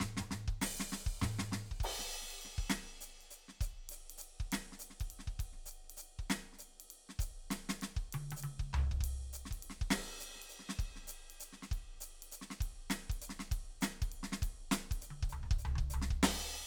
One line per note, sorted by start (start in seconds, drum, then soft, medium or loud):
0.01 snare medium
0.01 mid tom medium
0.18 snare medium
0.18 mid tom medium
0.32 snare medium
0.32 mid tom medium
0.48 kick medium
0.62 open hi-hat loud
0.62 snare medium
0.81 open hi-hat soft
0.81 snare medium
0.93 open hi-hat soft
0.93 snare medium
1.07 kick medium
1.22 snare medium
1.22 mid tom loud
1.40 snare medium
1.40 mid tom medium
1.52 snare medium
1.52 mid tom medium
1.72 kick soft
1.81 kick medium
1.81 crash loud
2.00 snare soft
2.12 hi-hat pedal soft
2.12 ride soft
2.23 snare soft
2.31 ride soft
2.39 hi-hat pedal soft
2.39 ride soft
2.46 snare soft
2.59 kick medium
2.71 snare medium
2.71 ride medium
3.02 hi-hat pedal medium
3.02 ride soft
3.22 ride soft
3.31 hi-hat pedal medium
3.37 ride soft
3.49 snare soft
3.62 kick medium
3.62 hi-hat pedal medium
3.90 hi-hat pedal medium
3.90 ride medium
4.11 ride medium
4.19 hi-hat pedal medium
4.19 ride medium
4.41 kick soft
4.53 snare medium
4.53 ride medium
4.73 snare soft
4.80 hi-hat pedal medium
4.80 ride medium
4.91 snare soft
5.01 kick soft
5.01 ride soft
5.20 snare soft
5.28 kick soft
5.40 kick soft
5.40 ride medium
5.53 snare soft
5.67 hi-hat pedal medium
5.72 ride soft
5.84 snare soft
5.91 ride medium
5.98 hi-hat pedal medium
6.02 ride soft
6.20 kick soft
6.31 snare medium
6.31 ride medium
6.54 snare soft
6.59 hi-hat pedal medium
6.59 ride soft
6.81 ride medium
6.91 ride medium
7.10 snare soft
7.20 kick medium
7.20 hi-hat pedal medium
7.20 ride medium
7.51 snare medium
7.51 ride medium
7.70 snare medium
7.70 ride soft
7.82 snare medium
7.82 ride soft
7.97 kick medium
8.13 high tom medium
8.13 ride medium
8.32 high tom medium
8.32 ride medium
8.37 hi-hat pedal medium
8.44 high tom medium
8.44 ride medium
8.60 kick soft
8.74 floor tom loud
8.74 mid tom medium
8.92 kick soft
9.01 kick soft
9.01 ride medium
9.34 hi-hat pedal medium
9.34 ride soft
9.46 snare soft
9.52 kick soft
9.52 ride medium
9.63 ride medium
9.71 snare soft
9.82 kick medium
9.91 snare loud
9.91 crash medium
10.21 hi-hat pedal medium
10.21 ride soft
10.36 snare soft
10.43 ride medium
10.50 hi-hat pedal soft
10.50 ride soft
10.60 snare soft
10.70 snare medium
10.80 kick medium
10.80 ride soft
10.96 snare soft
11.03 snare soft
11.08 hi-hat pedal medium
11.08 ride medium
11.31 ride soft
11.41 hi-hat pedal medium
11.41 ride medium
11.53 snare soft
11.63 snare soft
11.72 kick medium
11.72 ride soft
11.95 snare soft
12.01 hi-hat pedal medium
12.01 ride medium
12.23 ride medium
12.33 hi-hat pedal medium
12.33 ride soft
12.42 snare soft
12.51 snare soft
12.61 kick medium
12.61 ride medium
12.91 snare medium
12.91 ride medium
13.10 kick medium
13.10 ride medium
13.22 hi-hat pedal medium
13.22 ride soft
13.30 snare soft
13.40 snare medium
13.52 kick medium
13.52 ride medium
13.82 snare loud
13.82 hi-hat pedal medium
13.82 ride soft
14.03 kick medium
14.03 ride soft
14.13 ride soft
14.24 snare medium
14.33 snare medium
14.43 kick medium
14.43 hi-hat pedal soft
14.43 ride medium
14.72 snare loud
14.72 hi-hat pedal medium
14.72 ride medium
14.92 kick medium
14.92 ride medium
15.02 hi-hat pedal medium
15.02 ride soft
15.11 high tom medium
15.23 kick medium
15.30 floor tom medium
15.30 hi-hat pedal soft
15.44 mid tom medium
15.52 kick medium
15.59 hi-hat pedal soft
15.66 floor tom loud
15.76 kick medium
15.76 high tom medium
15.91 floor tom medium
15.91 hi-hat pedal medium
16.02 snare medium
16.11 kick medium
16.24 snare loud
16.24 crash loud